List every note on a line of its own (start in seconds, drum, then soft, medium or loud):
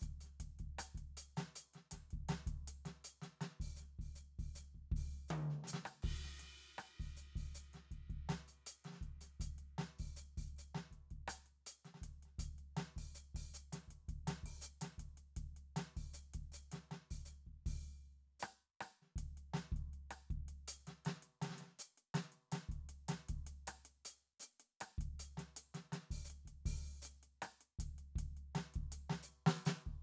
0.01 kick soft
0.01 closed hi-hat soft
0.01 hi-hat pedal soft
0.21 closed hi-hat soft
0.21 snare soft
0.40 kick soft
0.40 closed hi-hat soft
0.59 kick soft
0.59 closed hi-hat soft
0.79 closed hi-hat medium
0.79 cross-stick medium
0.95 kick soft
0.95 closed hi-hat soft
1.17 closed hi-hat medium
1.37 closed hi-hat soft
1.37 snare medium
1.56 closed hi-hat medium
1.74 snare soft
1.74 closed hi-hat soft
1.92 kick soft
1.92 snare soft
1.92 closed hi-hat medium
2.11 kick soft
2.11 closed hi-hat soft
2.29 snare medium
2.29 closed hi-hat soft
2.47 kick soft
2.47 closed hi-hat soft
2.68 closed hi-hat medium
2.86 snare soft
2.86 closed hi-hat soft
3.05 closed hi-hat medium
3.22 snare soft
3.22 closed hi-hat soft
3.41 snare soft
3.41 closed hi-hat soft
3.60 open hi-hat soft
3.60 kick soft
3.77 snare soft
3.77 hi-hat pedal soft
3.99 open hi-hat soft
3.99 kick soft
4.16 hi-hat pedal soft
4.39 open hi-hat soft
4.39 kick soft
4.56 snare soft
4.56 hi-hat pedal medium
4.75 kick soft
4.92 kick medium
4.96 open hi-hat soft
5.10 snare soft
5.14 snare soft
5.29 hi-hat pedal soft
5.29 high tom loud
5.50 snare soft
5.64 snare soft
5.64 hi-hat pedal loud
5.74 snare soft
5.86 cross-stick medium
6.03 kick medium
6.03 crash soft
6.25 snare soft
6.40 snare soft
6.40 closed hi-hat soft
6.58 closed hi-hat soft
6.79 cross-stick medium
6.79 closed hi-hat soft
7.00 open hi-hat soft
7.00 kick soft
7.17 snare soft
7.17 hi-hat pedal soft
7.36 open hi-hat soft
7.36 kick soft
7.55 hi-hat pedal medium
7.74 snare soft
7.74 closed hi-hat soft
7.92 kick soft
7.92 closed hi-hat soft
8.10 kick soft
8.10 closed hi-hat soft
8.29 snare medium
8.29 closed hi-hat soft
8.48 closed hi-hat soft
8.67 closed hi-hat medium
8.85 snare soft
8.85 closed hi-hat soft
8.89 snare soft
8.93 snare soft
9.02 kick soft
9.02 closed hi-hat soft
9.21 closed hi-hat soft
9.21 snare soft
9.40 closed hi-hat medium
9.40 kick soft
9.59 closed hi-hat soft
9.79 snare medium
9.79 closed hi-hat soft
9.99 open hi-hat soft
9.99 kick soft
10.17 hi-hat pedal medium
10.38 open hi-hat soft
10.38 kick soft
10.57 hi-hat pedal soft
10.57 open hi-hat soft
10.75 snare soft
10.75 closed hi-hat soft
10.92 kick soft
10.92 closed hi-hat soft
11.11 kick soft
11.11 closed hi-hat soft
11.28 closed hi-hat medium
11.28 cross-stick medium
11.46 closed hi-hat soft
11.67 closed hi-hat medium
11.85 snare soft
11.85 closed hi-hat soft
11.95 snare soft
12.02 kick soft
12.02 snare soft
12.02 closed hi-hat soft
12.23 snare soft
12.23 closed hi-hat soft
12.39 closed hi-hat medium
12.39 kick soft
12.59 closed hi-hat soft
12.77 snare medium
12.77 closed hi-hat soft
12.97 kick soft
12.97 open hi-hat medium
13.15 hi-hat pedal medium
13.35 kick soft
13.35 open hi-hat medium
13.54 hi-hat pedal medium
13.73 snare soft
13.73 closed hi-hat medium
13.88 kick soft
13.88 closed hi-hat soft
14.09 kick soft
14.09 closed hi-hat soft
14.28 snare medium
14.28 closed hi-hat medium
14.44 kick soft
14.44 open hi-hat soft
14.62 closed hi-hat soft
14.62 hi-hat pedal medium
14.82 snare soft
14.82 closed hi-hat medium
14.99 kick soft
14.99 closed hi-hat soft
15.18 closed hi-hat soft
15.37 kick soft
15.37 closed hi-hat soft
15.57 closed hi-hat soft
15.77 snare medium
15.77 closed hi-hat medium
15.97 kick soft
15.97 open hi-hat soft
16.14 closed hi-hat soft
16.14 hi-hat pedal medium
16.34 kick soft
16.34 closed hi-hat soft
16.53 hi-hat pedal medium
16.53 open hi-hat soft
16.72 snare soft
16.72 closed hi-hat soft
16.91 snare soft
16.91 closed hi-hat soft
17.11 open hi-hat soft
17.11 kick soft
17.26 snare soft
17.26 hi-hat pedal soft
17.47 kick soft
17.66 open hi-hat soft
17.66 kick soft
18.40 cross-stick medium
18.40 hi-hat pedal medium
18.81 cross-stick medium
18.85 cross-stick soft
19.02 snare soft
19.05 snare soft
19.16 kick soft
19.16 closed hi-hat soft
19.38 closed hi-hat soft
19.54 snare medium
19.54 closed hi-hat soft
19.72 kick soft
19.77 closed hi-hat soft
19.94 closed hi-hat soft
20.11 cross-stick medium
20.11 closed hi-hat soft
20.31 kick soft
20.31 closed hi-hat soft
20.49 closed hi-hat soft
20.68 closed hi-hat medium
20.87 snare soft
20.87 closed hi-hat soft
21.05 snare medium
21.05 closed hi-hat soft
21.23 closed hi-hat soft
21.42 snare medium
21.42 closed hi-hat soft
21.46 snare soft
21.50 snare soft
21.55 snare soft
21.55 closed hi-hat soft
21.61 snare soft
21.68 snare soft
21.75 snare soft
21.79 hi-hat pedal medium
21.98 closed hi-hat soft
22.15 snare medium
22.15 closed hi-hat soft
22.32 closed hi-hat soft
22.52 snare medium
22.52 closed hi-hat medium
22.69 kick soft
22.69 closed hi-hat soft
22.89 closed hi-hat soft
23.09 snare medium
23.09 closed hi-hat medium
23.29 kick soft
23.29 closed hi-hat soft
23.47 closed hi-hat soft
23.68 cross-stick medium
23.68 closed hi-hat medium
23.85 closed hi-hat soft
24.05 closed hi-hat medium
24.40 closed hi-hat soft
24.40 hi-hat pedal medium
24.60 closed hi-hat soft
24.81 cross-stick medium
24.81 closed hi-hat medium
24.98 kick soft
24.98 closed hi-hat soft
25.20 closed hi-hat medium
25.38 snare soft
25.38 closed hi-hat soft
25.57 closed hi-hat medium
25.75 snare soft
25.75 closed hi-hat soft
25.93 snare soft
25.93 closed hi-hat soft
26.11 open hi-hat medium
26.11 kick soft
26.25 hi-hat pedal medium
26.30 closed hi-hat soft
26.46 kick soft
26.46 closed hi-hat soft
26.66 open hi-hat medium
26.66 kick medium
27.02 closed hi-hat soft
27.02 hi-hat pedal medium
27.23 closed hi-hat soft
27.42 cross-stick medium
27.42 closed hi-hat soft
27.45 cross-stick soft
27.61 closed hi-hat soft
27.79 kick soft
27.79 closed hi-hat medium
27.99 closed hi-hat soft
28.16 kick soft
28.16 closed hi-hat soft
28.37 closed hi-hat soft
28.55 snare medium
28.55 closed hi-hat soft
28.74 kick soft
28.74 closed hi-hat soft
28.92 closed hi-hat medium
29.10 snare medium
29.23 hi-hat pedal medium
29.47 snare medium
29.66 snare medium
29.66 hi-hat pedal medium
29.87 kick soft